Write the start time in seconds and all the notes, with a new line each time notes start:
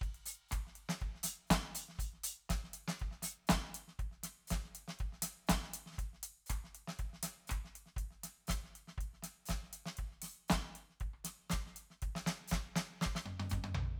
0.01 kick, closed hi-hat
0.14 closed hi-hat
0.25 open hi-hat, snare
0.48 kick, cross-stick, closed hi-hat, hi-hat pedal
0.67 snare
0.75 closed hi-hat
0.89 snare
1.01 kick, closed hi-hat
1.15 snare
1.23 closed hi-hat, snare
1.47 kick, snare, closed hi-hat, hi-hat pedal
1.63 snare
1.75 closed hi-hat
1.88 snare
1.92 snare
1.94 snare
1.99 closed hi-hat, kick
2.13 snare
2.23 closed hi-hat
2.49 kick, snare, closed hi-hat
2.63 snare
2.73 closed hi-hat
2.88 snare
2.99 kick, closed hi-hat
3.11 snare
3.22 open hi-hat, snare
3.47 snare, closed hi-hat, hi-hat pedal
3.51 kick
3.64 snare
3.74 closed hi-hat
3.87 snare
3.99 kick, closed hi-hat
4.11 snare
4.23 snare, open hi-hat
4.47 snare, closed hi-hat, hi-hat pedal
4.51 kick
4.64 snare
4.75 closed hi-hat
4.88 snare
4.99 kick, closed hi-hat
5.12 snare
5.22 snare, open hi-hat
5.47 kick, snare, closed hi-hat, hi-hat pedal
5.63 snare
5.73 closed hi-hat
5.86 snare
5.90 snare
5.92 snare
5.98 kick, closed hi-hat
6.13 snare
6.23 open hi-hat
6.46 kick, cross-stick, closed hi-hat, hi-hat pedal
6.64 snare
6.74 closed hi-hat
6.87 snare
6.99 kick, closed hi-hat
7.13 snare
7.23 snare, open hi-hat
7.47 cross-stick, closed hi-hat, hi-hat pedal
7.51 kick
7.64 snare
7.75 closed hi-hat
7.86 snare
7.96 kick, closed hi-hat
8.11 snare
8.23 snare, open hi-hat
8.47 kick, snare, closed hi-hat, hi-hat pedal
8.64 snare
8.75 closed hi-hat
8.87 snare
8.97 kick, closed hi-hat
9.13 snare
9.22 snare, closed hi-hat
9.45 snare, hi-hat pedal
9.49 kick, closed hi-hat
9.62 snare
9.73 closed hi-hat
9.86 snare
9.97 kick, closed hi-hat
10.11 snare
10.22 snare, open hi-hat
10.48 kick, snare, closed hi-hat, hi-hat pedal
10.65 snare
10.75 closed hi-hat
10.89 snare
11.00 kick, closed hi-hat
11.13 cross-stick
11.24 snare, open hi-hat
11.49 kick, snare, closed hi-hat, hi-hat pedal
11.66 snare
11.76 closed hi-hat
11.90 snare
12.02 kick, closed hi-hat
12.15 snare
12.26 snare
12.39 snare
12.47 snare, hi-hat pedal
12.52 kick
12.63 snare
12.76 snare
12.90 snare
13.01 snare
13.06 kick
13.15 snare
13.25 high tom
13.39 open hi-hat, high tom
13.49 kick, hi-hat pedal, high tom
13.64 closed hi-hat, high tom
13.74 floor tom